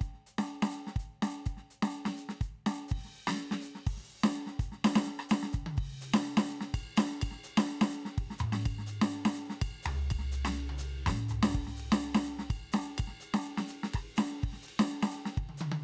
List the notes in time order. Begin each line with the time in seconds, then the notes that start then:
0.01 closed hi-hat, kick
0.07 snare
0.14 snare
0.19 snare
0.27 closed hi-hat
0.39 snare
0.51 closed hi-hat
0.62 snare
0.72 closed hi-hat, hi-hat pedal
0.87 snare
0.96 closed hi-hat, kick
1.22 closed hi-hat, snare
1.46 closed hi-hat, kick
1.57 snare
1.70 closed hi-hat
1.83 snare
1.95 closed hi-hat
2.06 snare
2.17 closed hi-hat, hi-hat pedal
2.29 snare
2.41 closed hi-hat, kick
2.66 closed hi-hat, snare
2.88 kick, hi-hat pedal, crash
2.98 kick, snare
3.01 kick
3.05 snare
3.15 closed hi-hat
3.27 snare
3.33 hi-hat pedal
3.39 closed hi-hat
3.51 snare
3.62 closed hi-hat, hi-hat pedal
3.75 snare
3.87 open hi-hat, kick
3.93 kick, snare
4.12 open hi-hat
4.24 snare
4.32 hi-hat pedal
4.36 closed hi-hat
4.47 snare
4.59 closed hi-hat, kick
4.66 kick
4.69 kick, snare
4.84 snare
4.96 snare
5.03 snare, hi-hat pedal
5.19 cross-stick
5.29 snare, hi-hat pedal
5.43 snare
5.53 kick, hi-hat pedal, high tom
5.63 kick, high tom
5.77 kick, crash
5.86 kick
6.01 hi-hat pedal, ride
6.14 snare
6.24 hi-hat pedal, ride
6.37 snare
6.49 hi-hat pedal
6.61 snare
6.74 kick, ride bell
6.82 kick
6.97 snare, hi-hat pedal, ride
7.07 snare
7.22 kick, ride bell
7.28 kick, snare
7.44 hi-hat pedal, ride
7.58 snare
7.71 ride
7.81 snare
7.91 hi-hat pedal, ride
8.05 snare
8.18 kick, ride
8.24 kick
8.27 kick, snare
8.38 hi-hat pedal, mid tom
8.53 snare
8.66 kick, ride bell
8.72 kick
8.75 kick, snare
8.87 hi-hat pedal
8.91 ride
9.02 snare
9.08 hi-hat pedal
9.16 ride
9.25 snare
9.34 hi-hat pedal
9.39 ride
9.50 snare
9.62 kick, ride bell
9.68 kick
9.71 kick
9.83 hi-hat pedal, ride, floor tom
10.11 kick, ride bell
10.17 kick, snare
10.20 kick
10.32 hi-hat pedal, ride
10.45 snare
10.58 ride
10.69 high tom
10.78 hi-hat pedal, ride
11.06 kick, snare, mid tom
11.14 kick
11.17 kick
11.29 kick, floor tom, hi-hat pedal
11.43 snare
11.50 snare
11.55 kick, crash
11.61 kick
11.67 snare
11.77 hi-hat pedal, ride
11.92 snare
12.04 ride
12.15 snare
12.25 hi-hat pedal, ride
12.39 snare
12.50 kick, ride bell
12.56 kick
12.59 kick
12.72 snare, hi-hat pedal, ride
12.98 kick, ride bell
13.05 kick, snare
13.08 kick
13.20 hi-hat pedal, ride
13.34 snare
13.47 ride
13.58 snare
13.68 hi-hat pedal, ride
13.84 snare
13.94 kick, cross-stick, ride
14.16 snare, hi-hat pedal, ride
14.42 kick, crash
14.49 kick
14.53 kick, snare
14.62 hi-hat pedal
14.69 ride bell
14.79 snare
14.92 ride
15.03 snare
15.11 hi-hat pedal
15.15 ride
15.26 snare
15.37 kick, high tom
15.43 kick
15.46 kick, high tom
15.58 hi-hat pedal, high tom
15.72 high tom